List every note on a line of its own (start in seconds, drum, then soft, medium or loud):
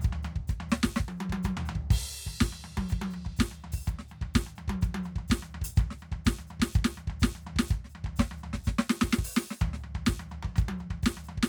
0.01 kick loud
0.01 hi-hat pedal medium
0.12 floor tom medium
0.23 floor tom medium
0.23 hi-hat pedal soft
0.36 kick medium
0.47 kick medium
0.47 snare soft
0.47 hi-hat pedal medium
0.60 floor tom medium
0.69 snare loud
0.69 hi-hat pedal soft
0.83 kick medium
0.83 snare loud
0.95 snare loud
0.95 hi-hat pedal medium
1.00 kick medium
1.08 high tom loud
1.17 hi-hat pedal soft
1.17 high tom loud
1.29 kick medium
1.29 high tom loud
1.43 kick medium
1.43 hi-hat pedal medium
1.43 high tom loud
1.57 floor tom loud
1.65 floor tom loud
1.65 hi-hat pedal medium
1.75 kick medium
1.90 kick loud
1.90 hi-hat pedal medium
1.90 crash loud
2.12 hi-hat pedal soft
2.26 kick medium
2.26 floor tom soft
2.40 kick medium
2.40 snare loud
2.40 hi-hat pedal medium
2.52 floor tom medium
2.62 floor tom medium
2.62 hi-hat pedal soft
2.77 kick medium
2.77 high tom loud
2.89 kick medium
2.89 floor tom medium
2.89 hi-hat pedal medium
3.02 high tom loud
3.10 floor tom medium
3.10 hi-hat pedal soft
3.25 kick medium
3.25 floor tom medium
3.37 kick medium
3.37 snare loud
3.37 hi-hat pedal medium
3.51 floor tom medium
3.59 hi-hat pedal soft
3.64 floor tom medium
3.72 open hi-hat loud
3.72 kick medium
3.86 kick medium
3.86 floor tom medium
3.86 hi-hat pedal medium
3.99 snare soft
4.08 floor tom soft
4.08 hi-hat pedal soft
4.21 kick medium
4.21 floor tom medium
4.34 kick medium
4.34 snare loud
4.34 hi-hat pedal medium
4.46 floor tom soft
4.55 floor tom medium
4.55 hi-hat pedal soft
4.68 kick medium
4.68 high tom loud
4.81 kick loud
4.81 floor tom medium
4.81 hi-hat pedal medium
4.94 high tom loud
5.03 floor tom medium
5.03 hi-hat pedal soft
5.16 kick medium
5.16 floor tom medium
5.28 kick medium
5.28 snare loud
5.28 hi-hat pedal medium
5.42 floor tom medium
5.50 hi-hat pedal soft
5.54 floor tom medium
5.61 open hi-hat loud
5.61 kick medium
5.76 kick loud
5.76 floor tom medium
5.76 hi-hat pedal medium
5.91 snare medium
5.99 floor tom medium
5.99 hi-hat pedal soft
6.12 kick medium
6.12 floor tom medium
6.25 kick medium
6.25 snare loud
6.25 hi-hat pedal medium
6.39 floor tom medium
6.47 floor tom medium
6.47 hi-hat pedal soft
6.60 kick medium
6.60 snare loud
6.73 kick loud
6.73 floor tom medium
6.73 hi-hat pedal medium
6.84 snare loud
6.94 floor tom medium
6.94 hi-hat pedal soft
7.07 kick medium
7.07 floor tom medium
7.20 kick loud
7.20 snare loud
7.20 hi-hat pedal medium
7.35 floor tom medium
7.41 hi-hat pedal soft
7.47 floor tom medium
7.56 kick medium
7.56 snare loud
7.67 kick loud
7.67 hi-hat pedal medium
7.72 floor tom medium
7.84 snare soft
7.89 hi-hat pedal soft
7.95 floor tom medium
8.04 kick medium
8.04 floor tom medium
8.16 kick medium
8.16 snare loud
8.16 hi-hat pedal medium
8.31 floor tom medium
8.37 hi-hat pedal soft
8.43 floor tom medium
8.53 kick medium
8.53 snare medium
8.64 kick medium
8.64 snare medium
8.64 hi-hat pedal medium
8.79 snare loud
8.86 snare loud
8.86 hi-hat pedal soft
9.01 kick medium
9.01 snare loud
9.10 snare loud
9.10 hi-hat pedal medium
9.19 kick medium
9.24 open hi-hat loud
9.36 snare loud
9.51 snare medium
9.59 kick loud
9.59 floor tom loud
9.59 hi-hat pedal medium
9.73 snare medium
9.78 hi-hat pedal soft
9.84 floor tom medium
9.95 kick medium
9.95 floor tom medium
10.06 kick medium
10.06 snare loud
10.06 hi-hat pedal medium
10.19 floor tom medium
10.29 floor tom medium
10.29 hi-hat pedal soft
10.43 kick medium
10.43 high tom medium
10.56 kick loud
10.56 floor tom medium
10.56 hi-hat pedal medium
10.68 high tom loud
10.78 floor tom medium
10.78 hi-hat pedal soft
10.90 kick medium
10.90 floor tom medium
11.03 kick medium
11.03 snare loud
11.03 hi-hat pedal medium
11.17 floor tom medium
11.24 hi-hat pedal medium
11.29 floor tom medium
11.37 kick medium
11.43 snare loud